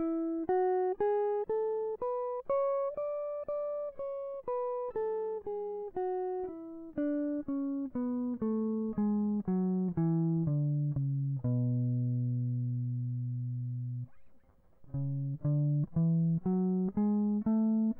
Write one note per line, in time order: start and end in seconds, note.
0.00 0.47 E4
0.49 0.96 F#4
1.00 1.45 G#4
1.49 1.97 A4
2.02 2.42 B4
2.50 2.97 C#5
2.97 3.45 D5
3.49 3.95 D5
3.99 4.46 C#5
4.48 4.92 B4
4.96 5.43 A4
5.47 5.91 G#4
5.97 6.48 F#4
6.48 6.96 E4
6.98 7.43 D4
7.49 7.90 C#4
7.96 8.39 B3
8.42 8.95 A3
8.98 9.43 G#3
9.49 9.94 F#3
9.98 10.51 E3
10.49 10.96 D3
10.98 11.41 C#3
11.46 14.08 B2
15.03 15.43 C#3
15.46 15.88 D3
15.97 16.41 E3
16.46 16.92 F#3
16.98 17.44 G#3
17.47 17.95 A3